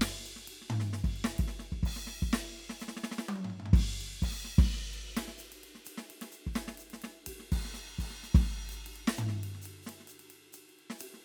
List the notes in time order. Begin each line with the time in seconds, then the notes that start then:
0.01 snare, ride
0.25 hi-hat pedal, ride
0.36 snare
0.47 ride
0.61 snare
0.70 floor tom
0.80 snare
0.93 snare
1.04 kick, ride
1.16 ride
1.24 snare
1.38 kick, ride
1.48 snare
1.59 snare
1.72 kick
1.83 kick, crash
1.96 snare
2.07 snare
2.22 kick
2.33 snare, ride
2.58 ride
2.69 snare
2.79 snare, hi-hat pedal
2.88 snare
2.96 snare
3.03 snare
3.11 snare
3.18 snare
3.28 high tom
3.36 high tom
3.44 floor tom
3.50 floor tom
3.60 floor tom
3.66 floor tom
3.73 kick, ride
4.01 ride bell
4.22 kick, crash
4.32 snare
4.44 snare
4.58 kick, crash
4.74 snare
4.87 snare
4.92 hi-hat pedal, ride
5.12 hi-hat pedal
5.17 snare, ride
5.28 snare
5.38 snare, hi-hat pedal, ride
5.51 snare, ride
5.63 ride
5.75 snare
5.85 hi-hat pedal, ride
5.97 snare
6.10 ride
6.21 snare, ride
6.32 hi-hat pedal, ride
6.47 kick
6.53 snare, hi-hat pedal, ride
6.68 snare
6.77 hi-hat pedal, ride
6.90 snare, ride
7.00 snare, hi-hat pedal, ride
7.26 kick, hi-hat pedal, ride
7.39 snare
7.52 kick, crash
7.65 snare
7.74 snare, hi-hat pedal
7.99 kick, crash
8.10 snare
8.23 snare, hi-hat pedal
8.33 kick, snare, crash
8.51 snare
8.58 snare
8.69 hi-hat pedal, ride
8.86 ride
8.92 hi-hat pedal, ride
9.07 snare
9.16 floor tom, hi-hat pedal
9.28 snare
9.43 ride
9.54 snare
9.62 hi-hat pedal
9.66 ride
9.83 snare, hi-hat pedal
9.89 ride
10.00 snare
10.07 hi-hat pedal, ride
10.19 ride
10.29 hi-hat pedal, ride
10.52 hi-hat pedal, ride
10.69 ride
10.73 hi-hat pedal
10.79 ride
10.90 snare
10.98 hi-hat pedal, ride
11.14 snare